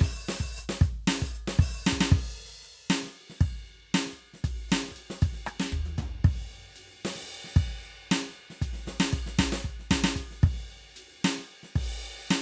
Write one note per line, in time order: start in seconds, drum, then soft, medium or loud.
0.01 open hi-hat loud
0.01 kick loud
0.28 open hi-hat loud
0.28 snare loud
0.40 kick medium
0.56 open hi-hat loud
0.56 kick soft
0.56 hi-hat pedal soft
0.69 snare loud
0.81 closed hi-hat medium
0.81 kick loud
1.03 hi-hat pedal soft
1.07 open hi-hat loud
1.07 snare loud
1.21 kick medium
1.21 snare medium
1.26 snare soft
1.31 closed hi-hat medium
1.31 snare soft
1.31 hi-hat pedal medium
1.47 snare loud
1.57 open hi-hat loud
1.57 kick loud
1.57 snare soft
1.80 snare soft
1.86 snare loud
1.86 hi-hat pedal medium
1.92 kick medium
2.01 snare loud
2.12 kick loud
2.12 crash loud
2.62 hi-hat pedal medium
2.90 snare loud
2.90 ride loud
3.03 snare medium
3.07 snare soft
3.15 ride soft
3.30 snare medium
3.41 kick loud
3.41 ride bell loud
3.66 hi-hat pedal soft
3.66 ride bell soft
3.94 snare loud
3.94 ride bell loud
4.07 snare medium
4.12 kick soft
4.17 hi-hat pedal soft
4.17 ride soft
4.34 snare soft
4.44 kick medium
4.44 ride loud
4.68 snare loud
4.68 hi-hat pedal medium
4.68 ride medium
4.84 snare medium
4.88 kick soft
4.88 snare soft
4.93 hi-hat pedal soft
4.93 ride loud
5.10 snare medium
5.22 kick loud
5.22 ride loud
5.33 snare soft
5.45 cross-stick medium
5.45 hi-hat pedal medium
5.60 snare loud
5.70 kick soft
5.70 hi-hat pedal medium
5.70 mid tom loud
5.86 high tom medium
5.95 kick medium
5.95 floor tom loud
5.95 hi-hat pedal soft
6.24 kick loud
6.24 hi-hat pedal medium
6.24 ride medium
6.75 hi-hat pedal medium
6.75 ride loud
7.05 snare loud
7.05 ride loud
7.16 snare medium
7.19 snare soft
7.22 kick soft
7.22 snare soft
7.28 hi-hat pedal soft
7.28 ride soft
7.44 snare medium
7.56 kick loud
7.56 ride bell loud
7.82 hi-hat pedal medium
7.82 ride soft
8.11 snare loud
8.11 ride bell loud
8.22 snare soft
8.25 snare soft
8.28 snare soft
8.33 snare soft
8.33 hi-hat pedal soft
8.33 ride soft
8.50 snare medium
8.62 kick medium
8.62 ride loud
8.73 snare soft
8.77 snare soft
8.83 kick soft
8.83 snare soft
8.83 hi-hat pedal medium
8.87 snare medium
9.00 snare loud
9.13 kick medium
9.13 ride bell loud
9.26 snare medium
9.37 kick medium
9.37 snare loud
9.37 hi-hat pedal medium
9.52 snare loud
9.64 kick medium
9.64 snare soft
9.64 ride soft
9.79 snare soft
9.90 kick medium
9.90 snare loud
9.90 hi-hat pedal medium
10.04 snare loud
10.14 kick medium
10.14 hi-hat pedal soft
10.14 ride loud
10.31 snare soft
10.42 kick loud
10.42 hi-hat pedal medium
10.42 ride medium
10.95 hi-hat pedal medium
10.95 ride loud
11.24 snare loud
11.24 ride medium
11.38 snare soft
11.47 hi-hat pedal soft
11.47 ride soft
11.63 snare soft
11.76 kick loud
11.76 ride loud
12.01 hi-hat pedal medium
12.01 ride soft
12.30 snare loud
12.30 ride loud